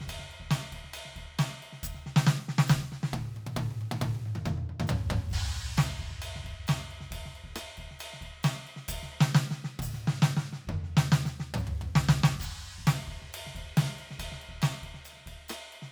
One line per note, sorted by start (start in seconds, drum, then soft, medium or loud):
0.01 snare soft
0.08 kick soft
0.08 ride bell loud
0.08 percussion soft
0.14 kick soft
0.19 snare soft
0.25 snare soft
0.32 ride soft
0.40 kick soft
0.51 snare loud
0.51 ride bell loud
0.51 percussion medium
0.72 kick soft
0.72 ride medium
0.78 kick soft
0.84 snare soft
0.94 ride bell loud
0.94 percussion soft
1.06 snare soft
1.12 kick soft
1.12 snare soft
1.17 ride soft
1.39 snare loud
1.39 ride bell loud
1.39 percussion soft
1.63 ride medium
1.73 snare soft
1.83 kick soft
1.83 ride bell medium
1.83 percussion loud
1.90 kick soft
1.95 snare soft
2.06 snare medium
2.16 snare loud
2.27 snare loud
2.37 snare soft
2.49 snare medium
2.59 snare loud
2.68 kick soft
2.68 snare loud
2.68 percussion medium
2.75 cross-stick soft
2.83 snare soft
2.92 snare medium
3.03 snare medium
3.13 kick soft
3.13 high tom loud
3.19 kick soft
3.29 high tom soft
3.36 high tom soft
3.47 high tom loud
3.56 kick soft
3.56 high tom loud
3.56 percussion soft
3.71 high tom soft
3.81 high tom soft
3.92 high tom loud
4.01 kick soft
4.01 percussion soft
4.06 kick soft
4.15 high tom soft
4.26 mid tom soft
4.35 mid tom medium
4.46 kick soft
4.46 mid tom loud
4.46 percussion soft
4.58 mid tom soft
4.69 mid tom soft
4.80 mid tom loud
4.87 percussion medium
4.87 floor tom loud
5.10 kick soft
5.10 floor tom loud
5.30 kick medium
5.30 percussion soft
5.30 crash loud
5.47 kick soft
5.68 kick soft
5.78 snare loud
5.78 ride bell loud
5.78 percussion medium
5.86 snare soft
5.99 kick soft
5.99 ride soft
6.11 snare soft
6.22 ride bell loud
6.22 percussion soft
6.36 snare soft
6.44 kick soft
6.44 ride soft
6.50 kick soft
6.67 snare loud
6.67 ride bell loud
6.67 percussion medium
6.91 ride soft
7.01 snare soft
7.11 kick soft
7.11 ride loud
7.11 percussion soft
7.18 kick soft
7.26 snare soft
7.36 ride soft
7.44 kick soft
7.56 cross-stick medium
7.56 ride bell loud
7.56 percussion soft
7.77 kick soft
7.77 ride medium
7.91 snare soft
8.00 ride bell loud
8.00 percussion medium
8.14 snare soft
8.22 kick soft
8.22 ride soft
8.28 kick soft
8.43 snare loud
8.43 ride bell loud
8.43 percussion medium
8.67 ride soft
8.77 snare soft
8.89 kick medium
8.89 ride loud
8.89 percussion loud
8.96 kick soft
9.03 snare soft
9.21 snare loud
9.35 snare loud
9.51 snare medium
9.65 snare medium
9.79 kick soft
9.79 high tom loud
9.79 percussion loud
9.86 kick soft
9.94 snare soft
10.08 snare loud
10.22 snare loud
10.37 snare medium
10.53 snare medium
10.67 kick soft
10.67 mid tom loud
10.74 kick soft
10.77 kick soft
10.84 snare soft
10.97 snare loud
11.12 snare loud
11.26 snare medium
11.26 percussion soft
11.40 snare medium
11.54 percussion soft
11.54 floor tom loud
11.67 floor tom medium
11.82 floor tom medium
11.96 snare loud
12.09 snare loud
12.24 snare loud
12.40 kick soft
12.40 percussion medium
12.40 crash medium
12.47 kick soft
12.50 kick soft
12.78 kick soft
12.84 kick soft
12.84 snare loud
12.84 ride loud
12.90 percussion medium
13.08 kick soft
13.08 ride soft
13.22 snare soft
13.33 ride loud
13.33 percussion soft
13.47 snare soft
13.55 kick soft
13.55 ride medium
13.61 kick soft
13.77 snare loud
13.77 ride loud
13.77 percussion medium
13.99 ride soft
14.11 snare soft
14.19 kick soft
14.19 ride bell loud
14.19 percussion soft
14.26 kick soft
14.32 snare soft
14.42 ride soft
14.49 kick soft
14.54 kick soft
14.62 snare loud
14.62 ride bell loud
14.62 percussion medium
14.83 kick soft
14.83 ride soft
14.88 kick soft
14.94 snare soft
15.05 ride bell medium
15.05 percussion medium
15.13 snare soft
15.17 snare soft
15.21 snare soft
15.26 kick soft
15.26 ride medium
15.49 cross-stick medium
15.49 ride bell loud
15.49 percussion medium
15.73 ride medium
15.82 snare soft